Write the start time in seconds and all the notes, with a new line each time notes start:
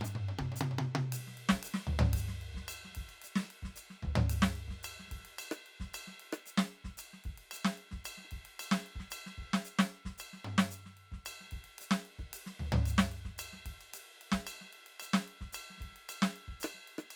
0.01 hi-hat pedal, mid tom
0.15 mid tom
0.28 mid tom
0.39 kick, high tom
0.52 mid tom
0.56 hi-hat pedal
0.61 high tom
0.71 mid tom
0.78 high tom
0.95 high tom
1.12 hi-hat pedal, ride
1.27 snare
1.36 hi-hat pedal, ride
1.49 kick, snare
1.63 hi-hat pedal, ride
1.74 snare
1.87 floor tom
1.99 floor tom
2.13 kick, hi-hat pedal, ride
2.26 kick, snare
2.41 ride
2.54 kick, snare
2.68 hi-hat pedal, ride bell
2.85 snare
2.92 snare, ride
2.97 kick
3.01 snare
3.09 ride bell
3.22 hi-hat pedal, ride
3.36 snare
3.50 ride
3.62 kick, snare
3.76 hi-hat pedal, ride bell
3.90 snare
4.02 kick, floor tom
4.10 kick
4.16 floor tom
4.29 hi-hat pedal, ride
4.42 snare
4.55 ride
4.68 kick, snare
4.83 hi-hat pedal, ride bell
4.99 snare
5.08 kick, snare, ride
5.12 snare
5.20 snare
5.25 snare, ride
5.39 hi-hat pedal, ride bell
5.51 cross-stick
5.66 ride
5.80 kick, snare
5.94 hi-hat pedal, ride bell
6.07 snare
6.20 ride
6.33 cross-stick
6.46 hi-hat pedal, ride
6.57 snare
6.70 ride
6.84 kick, snare
6.97 hi-hat pedal, ride bell
7.13 snare
7.24 kick, ride
7.31 kick
7.38 ride
7.51 hi-hat pedal, ride bell
7.65 snare
7.77 ride
7.91 kick, snare
7.98 kick
8.04 hi-hat pedal, ride bell
8.17 snare
8.25 cross-stick
8.31 kick, ride
8.45 ride
8.59 hi-hat pedal, ride bell
8.71 snare
8.77 snare
8.86 ride
8.95 kick
9.00 snare
9.10 hi-hat pedal, ride bell
9.26 snare
9.38 kick, ride
9.53 snare
9.65 hi-hat pedal, ride bell
9.79 snare
10.05 kick, snare
10.18 hi-hat pedal, ride bell
10.33 snare
10.45 mid tom
10.58 snare
10.71 hi-hat pedal, ride bell
10.86 snare
10.97 ride
11.12 kick, snare
11.25 hi-hat pedal, ride bell
11.41 snare
11.47 snare
11.51 kick, snare, ride
11.54 snare
11.64 ride
11.78 hi-hat pedal, ride
11.91 snare
12.05 ride
12.19 kick, cross-stick
12.33 hi-hat pedal, ride
12.46 snare
12.59 floor tom
12.72 floor tom
12.86 hi-hat pedal, ride bell
12.98 snare
13.12 ride
13.25 kick, snare
13.38 hi-hat pedal, ride bell
13.53 snare
13.66 kick, ride
13.81 ride bell
13.94 hi-hat pedal, ride
14.21 ride
14.32 kick, snare
14.47 hi-hat pedal, ride bell
14.61 snare
14.73 ride
14.86 ride
15.00 hi-hat pedal, ride bell
15.13 snare
15.28 ride
15.41 kick, snare
15.52 hi-hat pedal, ride bell
15.70 snare
15.77 kick, snare
15.82 snare, ride
15.86 snare
15.92 snare
15.96 ride
16.09 hi-hat pedal, ride bell
16.22 snare
16.36 ride
16.48 kick
16.60 hi-hat pedal, ride bell
16.64 cross-stick
16.74 snare
16.87 ride
16.98 cross-stick
17.10 ride bell